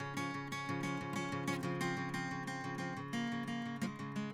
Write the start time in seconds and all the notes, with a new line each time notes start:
0.01 C#3 C#4
0.18 F3 C#4
0.35 C#3
0.53 F3 C#4
0.69 C#3 F3
0.84 F3 C#4
1.01 C#3 F3
1.17 F3 C#4
1.32 C#3 F3
1.48 F3 C#4
1.56 C4
1.63 C#3 F3
1.81 F3 C4
1.97 C#3 F3
2.14 F3 C4
2.32 C#3 F3
2.48 F3 C4
2.65 C#3 F3
2.79 F3 C4
2.97 C#3
3.13 F3 A#3
3.33 C#3
3.48 F3 A#3
3.67 C#3
3.83 G#3
4.00 C#3